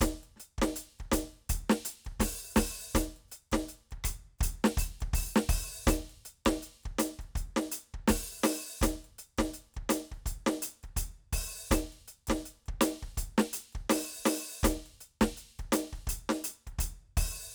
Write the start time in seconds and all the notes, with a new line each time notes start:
0.01 closed hi-hat, kick, snare, hi-hat pedal
0.24 closed hi-hat
0.37 closed hi-hat, snare
0.59 kick, snare
0.63 closed hi-hat
0.77 closed hi-hat
1.00 kick, closed hi-hat
1.12 closed hi-hat, kick, snare
1.50 closed hi-hat, kick
1.70 snare
1.86 closed hi-hat
2.06 kick, closed hi-hat
2.20 open hi-hat, kick, snare
2.57 open hi-hat, kick, snare
2.95 open hi-hat, kick, snare, hi-hat pedal
3.17 closed hi-hat
3.29 closed hi-hat, hi-hat pedal
3.52 kick, snare, closed hi-hat
3.69 closed hi-hat
3.92 kick, closed hi-hat
4.05 closed hi-hat, kick, cross-stick
4.39 kick, hi-hat pedal
4.44 closed hi-hat
4.65 snare
4.78 open hi-hat, kick
4.82 hi-hat pedal
5.01 kick, closed hi-hat
5.14 open hi-hat, kick
5.37 snare
5.50 open hi-hat, kick
5.88 open hi-hat, kick, snare, hi-hat pedal
6.10 closed hi-hat
6.25 closed hi-hat, kick
6.46 kick, snare, closed hi-hat
6.63 closed hi-hat
6.84 kick, closed hi-hat
6.99 closed hi-hat, snare
7.20 kick, closed hi-hat
7.36 closed hi-hat, kick
7.57 snare
7.72 closed hi-hat
7.92 kick, closed hi-hat
8.09 open hi-hat, kick, snare
8.44 open hi-hat, snare
8.82 closed hi-hat, kick, snare, hi-hat pedal
9.05 closed hi-hat
9.19 closed hi-hat
9.39 kick, snare, closed hi-hat
9.54 closed hi-hat
9.75 kick, closed hi-hat
9.90 closed hi-hat, snare
10.12 kick, closed hi-hat
10.27 closed hi-hat, kick
10.47 snare
10.63 closed hi-hat
10.84 kick, closed hi-hat
10.97 open hi-hat, kick
11.33 open hi-hat, kick
11.72 open hi-hat, kick, snare, hi-hat pedal
11.93 closed hi-hat
12.09 closed hi-hat
12.28 kick, snare, closed hi-hat
12.46 closed hi-hat
12.67 kick, closed hi-hat
12.82 closed hi-hat, snare
13.03 kick, closed hi-hat
13.18 closed hi-hat, kick
13.39 snare
13.54 closed hi-hat
13.73 kick, closed hi-hat
13.90 open hi-hat, snare
14.20 kick
14.26 open hi-hat, snare
14.64 closed hi-hat, kick, snare, hi-hat pedal
14.87 closed hi-hat
15.01 closed hi-hat
15.22 kick, snare, closed hi-hat
15.38 closed hi-hat
15.60 kick, closed hi-hat
15.73 closed hi-hat, snare, hi-hat pedal
15.93 kick, closed hi-hat
16.08 closed hi-hat, kick
16.30 snare
16.45 closed hi-hat
16.68 kick, closed hi-hat
16.79 open hi-hat, kick
17.18 open hi-hat, kick